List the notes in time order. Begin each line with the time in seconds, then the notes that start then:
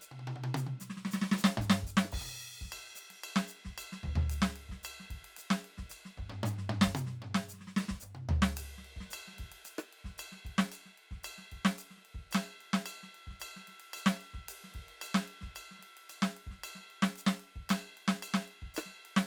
0.01 hi-hat pedal
0.11 high tom
0.19 high tom
0.27 high tom
0.36 high tom
0.44 high tom
0.54 hi-hat pedal, high tom
0.67 high tom
0.80 snare, hi-hat pedal
0.90 snare
0.97 snare
1.05 snare
1.11 snare, hi-hat pedal
1.22 snare
1.31 snare
1.38 hi-hat pedal
1.44 snare
1.57 kick, hi-hat pedal, mid tom
1.64 kick
1.70 snare
1.82 kick
1.87 kick, hi-hat pedal
1.97 snare
2.05 cross-stick
2.12 kick, crash
2.21 kick, high tom
2.28 kick
2.39 hi-hat pedal
2.61 kick, snare
2.72 ride bell
2.95 hi-hat pedal, ride
3.10 snare, ride
3.24 ride bell
3.36 snare
3.48 hi-hat pedal, ride
3.65 kick, snare
3.78 hi-hat pedal, ride bell
3.92 snare
4.03 kick, floor tom
4.11 kick
4.15 floor tom
4.30 hi-hat pedal, ride
4.42 snare
4.48 snare
4.56 ride
4.69 kick, snare
4.83 hi-hat pedal, ride bell
5.00 snare
5.10 kick, ride
5.16 kick
5.24 ride
5.36 hi-hat pedal, ride
5.50 snare
5.64 ride
5.78 kick, snare
5.86 kick, hi-hat pedal
5.91 ride bell
6.05 snare
6.17 kick, mid tom
6.24 kick
6.29 mid tom
6.43 hi-hat pedal, mid tom
6.58 snare
6.69 mid tom
6.81 kick, snare
6.95 hi-hat pedal, high tom
7.06 snare
7.22 mid tom
7.34 snare
7.47 snare, hi-hat pedal
7.53 snare
7.58 snare
7.60 snare
7.67 snare
7.76 snare
7.88 kick, snare
8.00 hi-hat pedal, mid tom
8.15 closed hi-hat, high tom
8.29 floor tom
8.42 snare
8.56 hi-hat pedal, ride
8.78 snare
8.84 ride
8.96 kick
9.00 snare
9.07 snare, hi-hat pedal
9.13 ride bell
9.27 snare
9.33 snare
9.37 kick, snare, ride
9.45 kick
9.52 ride
9.65 hi-hat pedal, ride
9.78 cross-stick
9.93 ride
10.04 kick, snare
10.18 hi-hat pedal, ride bell
10.32 snare
10.45 kick, ride
10.58 snare
10.72 hi-hat pedal, ride bell
10.85 snare
10.98 ride
11.11 kick, snare
11.23 hi-hat pedal, ride bell
11.38 snare
11.52 kick, ride
11.65 snare
11.78 hi-hat pedal, ride
11.90 snare
11.97 snare
12.05 ride
12.14 kick
12.31 snare, hi-hat pedal, ride bell
12.61 ride
12.73 snare
12.86 hi-hat pedal, ride bell
13.03 snare
13.14 ride
13.27 kick, snare
13.39 kick, hi-hat pedal, ride bell
13.56 snare
13.67 snare, ride
13.80 ride
13.93 hi-hat pedal, ride bell
14.06 snare
14.21 ride
14.33 kick, snare
14.48 hi-hat pedal, ride
14.64 snare
14.71 kick, snare, ride
14.88 ride
15.01 hi-hat pedal, ride bell
15.14 snare
15.28 ride
15.41 kick, snare
15.55 hi-hat pedal, ride bell
15.71 snare
15.79 snare, ride
15.97 ride
16.09 hi-hat pedal, ride bell
16.22 snare
16.37 ride
16.46 kick
16.51 snare
16.64 hi-hat pedal, ride bell
16.75 snare
16.90 ride
17.02 snare
17.16 hi-hat pedal, ride
17.26 snare
17.40 ride
17.55 kick
17.69 snare, hi-hat pedal, ride bell
17.97 ride
18.08 snare
18.22 hi-hat pedal, ride bell
18.34 snare
18.48 ride
18.62 kick
18.74 cross-stick, hi-hat pedal, ride bell
18.86 snare
19.05 ride
19.16 snare